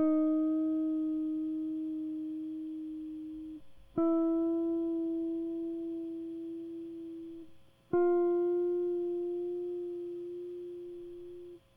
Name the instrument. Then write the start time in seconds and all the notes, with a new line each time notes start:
electric guitar
0.00 D#4
3.98 E4
7.94 F4